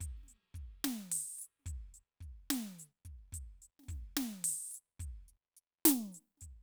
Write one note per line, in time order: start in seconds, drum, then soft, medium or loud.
0.01 closed hi-hat medium
0.01 kick soft
0.18 snare soft
0.24 snare soft
0.27 closed hi-hat soft
0.27 snare soft
0.55 kick soft
0.55 closed hi-hat soft
0.85 closed hi-hat medium
0.85 snare medium
1.12 open hi-hat loud
1.39 closed hi-hat soft
1.39 hi-hat pedal medium
1.60 snare soft
1.66 closed hi-hat soft
1.66 kick soft
1.94 closed hi-hat soft
2.21 kick soft
2.21 closed hi-hat soft
2.51 closed hi-hat medium
2.51 snare medium
2.79 closed hi-hat soft
2.79 hi-hat pedal soft
3.05 kick soft
3.05 closed hi-hat soft
3.33 closed hi-hat medium
3.33 kick soft
3.62 closed hi-hat soft
3.80 snare soft
3.84 snare soft
3.89 closed hi-hat soft
3.89 kick soft
3.89 snare soft
3.94 kick soft
4.17 snare medium
4.17 closed hi-hat soft
4.45 open hi-hat loud
4.72 closed hi-hat soft
4.72 hi-hat pedal medium
5.00 closed hi-hat medium
5.00 kick soft
5.29 closed hi-hat soft
5.57 closed hi-hat soft
5.86 closed hi-hat loud
5.86 snare loud
6.13 closed hi-hat soft
6.13 hi-hat pedal soft
6.38 closed hi-hat soft
6.38 snare soft
6.42 kick soft